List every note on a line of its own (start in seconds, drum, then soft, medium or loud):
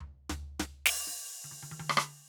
0.01 floor tom medium
0.29 snare medium
0.29 floor tom medium
0.59 snare medium
0.59 floor tom soft
0.86 open hi-hat loud
0.86 snare loud
1.07 snare soft
1.44 high tom soft
1.51 high tom soft
1.63 high tom soft
1.71 high tom medium
1.79 high tom medium
1.89 cross-stick medium
1.97 cross-stick loud